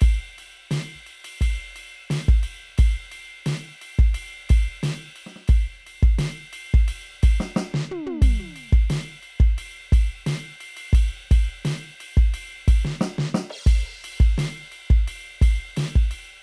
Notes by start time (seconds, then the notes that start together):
0.01 kick, ride
0.38 ride
0.71 snare, ride
0.95 kick
1.07 ride
1.24 ride
1.41 kick, ride
1.76 ride
2.10 snare, ride
2.28 kick
2.43 ride
2.78 kick, ride
3.12 ride
3.46 snare, ride
3.82 ride
3.99 kick
4.14 ride
4.49 kick, ride
4.83 snare, ride
5.16 ride
5.23 snare, ride
5.36 snare
5.48 kick, ride
5.87 ride
6.03 kick
6.19 snare, ride
6.53 ride
6.74 kick
6.88 ride
7.23 kick, ride
7.40 snare
7.56 snare
7.74 snare
7.91 floor tom
8.06 floor tom
8.22 kick, ride
8.39 floor tom
8.56 ride
8.73 kick, snare
8.90 snare, ride
9.23 ride
9.40 kick, snare
9.58 ride
9.92 kick, ride
10.27 snare, ride
10.61 ride
10.77 ride
10.93 kick, ride
11.31 kick, ride
11.65 snare, ride
12.00 ride
12.17 kick, snare
12.34 ride
12.68 kick, ride
12.85 snare
13.01 snare
13.18 snare
13.35 snare
13.50 crash
13.66 kick, ride
14.04 ride
14.20 kick
14.38 snare, ride
14.72 ride
14.90 kick
15.08 ride
15.42 kick, ride
15.77 snare, ride
15.96 kick
16.11 ride